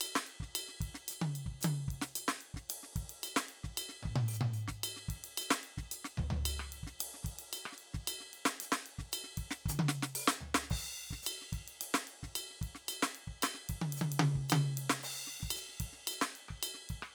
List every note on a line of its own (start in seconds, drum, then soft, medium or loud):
0.01 hi-hat pedal medium
0.01 ride bell loud
0.16 snare loud
0.27 ride soft
0.40 kick soft
0.40 snare soft
0.55 hi-hat pedal medium
0.55 ride bell loud
0.69 snare soft
0.81 kick soft
0.81 ride medium
0.87 kick soft
0.95 snare medium
1.08 hi-hat pedal medium
1.08 ride bell medium
1.22 high tom medium
1.35 ride bell medium
1.46 kick soft
1.52 kick soft
1.61 hi-hat pedal medium
1.61 high tom loud
1.61 ride bell medium
1.88 kick soft
1.88 ride soft
1.94 kick soft
2.02 snare loud
2.16 hi-hat pedal medium
2.16 ride bell loud
2.28 snare loud
2.41 ride soft
2.54 kick soft
2.54 snare soft
2.69 hi-hat pedal medium
2.69 ride loud
2.83 snare soft
2.93 kick soft
2.93 snare soft
2.93 ride medium
3.03 kick soft
3.10 ride medium
3.23 hi-hat pedal medium
3.23 ride bell loud
3.36 snare loud
3.49 ride soft
3.64 kick soft
3.64 snare soft
3.69 kick soft
3.77 hi-hat pedal medium
3.77 ride bell loud
3.89 snare soft
4.03 kick soft
4.03 mid tom medium
4.16 mid tom loud
4.28 closed hi-hat medium
4.33 hi-hat pedal medium
4.41 mid tom loud
4.54 closed hi-hat soft
4.68 kick soft
4.68 snare medium
4.84 hi-hat pedal medium
4.84 ride bell loud
4.97 snare soft
5.09 kick soft
5.09 snare soft
5.09 ride medium
5.15 kick soft
5.15 snare soft
5.19 snare soft
5.24 snare soft
5.24 ride medium
5.38 hi-hat pedal medium
5.38 ride bell loud
5.51 snare loud
5.63 ride soft
5.78 kick soft
5.78 snare soft
5.83 kick soft
5.91 hi-hat pedal medium
5.91 ride bell medium
6.05 snare medium
6.17 kick soft
6.17 floor tom medium
6.25 kick soft
6.30 floor tom loud
6.46 hi-hat pedal medium
6.46 ride bell loud
6.60 cross-stick medium
6.72 ride medium
6.83 kick soft
6.83 snare soft
7.00 hi-hat pedal medium
7.00 ride loud
7.14 snare soft
7.23 kick soft
7.23 snare soft
7.23 ride medium
7.39 ride medium
7.53 hi-hat pedal medium
7.53 ride bell loud
7.66 cross-stick medium
7.72 snare soft
7.78 ride soft
7.94 kick soft
7.94 snare soft
8.08 hi-hat pedal medium
8.08 ride bell loud
8.20 snare soft
8.33 ride soft
8.45 snare loud
8.60 hi-hat pedal medium
8.60 ride medium
8.72 snare loud
8.86 ride soft
8.99 kick soft
8.99 snare soft
9.12 hi-hat pedal medium
9.12 ride bell loud
9.24 snare soft
9.37 kick soft
9.37 ride medium
9.51 snare medium
9.66 kick medium
9.66 hi-hat pedal loud
9.70 high tom medium
9.79 high tom loud
9.89 snare loud
10.03 snare loud
10.15 closed hi-hat loud
10.28 snare loud
10.41 floor tom soft
10.55 snare loud
10.63 snare soft
10.70 kick medium
10.70 cross-stick soft
10.70 crash medium
10.84 kick soft
11.11 kick soft
11.11 snare soft
11.23 hi-hat pedal medium
11.27 ride bell loud
11.42 snare soft
11.53 kick soft
11.53 snare soft
11.53 ride soft
11.57 kick soft
11.57 snare soft
11.61 snare soft
11.68 ride medium
11.81 hi-hat pedal medium
11.81 ride loud
11.94 snare loud
12.07 ride soft
12.23 kick soft
12.23 snare soft
12.28 kick soft
12.36 hi-hat pedal medium
12.36 ride bell loud
12.50 snare soft
12.61 kick soft
12.61 ride soft
12.68 kick soft
12.75 snare soft
12.89 hi-hat pedal medium
12.89 ride bell loud
13.03 snare loud
13.15 ride soft
13.27 kick soft
13.42 snare medium
13.42 hi-hat pedal medium
13.42 ride bell loud
13.55 snare soft
13.69 kick soft
13.69 ride medium
13.75 kick soft
13.82 high tom medium
13.93 ride medium
13.97 hi-hat pedal medium
14.01 high tom medium
14.12 ride medium
14.20 high tom loud
14.35 kick soft
14.49 hi-hat pedal medium
14.49 high tom loud
14.49 ride bell loud
14.77 ride medium
14.90 snare loud
14.99 snare soft
14.99 crash medium
15.04 hi-hat pedal medium
15.27 snare soft
15.40 kick soft
15.40 snare soft
15.50 snare soft
15.50 ride bell loud
15.56 hi-hat pedal medium
15.69 snare soft
15.80 kick soft
15.80 ride medium
15.86 kick soft
15.93 snare soft
15.98 snare soft
16.02 snare soft
16.07 hi-hat pedal medium
16.07 ride bell loud
16.22 snare loud
16.35 ride soft
16.49 kick soft
16.49 cross-stick medium
16.63 hi-hat pedal medium
16.63 ride bell loud
16.74 snare soft
16.89 kick soft
16.89 ride soft
16.97 kick soft
17.02 cross-stick medium